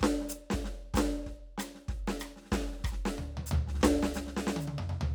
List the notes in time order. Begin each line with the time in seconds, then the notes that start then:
0.01 kick, snare
0.03 snare
0.21 snare
0.26 snare
0.29 snare, hi-hat pedal
0.31 snare
0.51 kick, snare
0.65 snare
0.94 kick, snare, hi-hat pedal
0.98 snare
1.04 snare
1.09 snare
1.13 snare
1.18 snare
1.22 snare
1.26 kick, snare
1.58 cross-stick, snare, hi-hat pedal
1.75 snare
1.89 kick, snare
2.08 snare
2.20 cross-stick, hi-hat pedal
2.37 snare
2.41 snare
2.45 snare
2.52 kick, snare
2.60 snare
2.67 snare
2.72 snare
2.76 snare
2.79 snare
2.83 kick, cross-stick, snare, hi-hat pedal
2.92 snare
3.06 snare
3.19 floor tom
3.37 floor tom
3.47 hi-hat pedal
3.52 floor tom
3.68 snare
3.75 snare
3.80 kick, snare
3.84 snare
4.03 snare
4.14 snare, hi-hat pedal
4.27 snare
4.37 snare
4.47 snare
4.57 high tom
4.61 hi-hat pedal
4.68 high tom
4.79 mid tom
4.90 mid tom
5.01 floor tom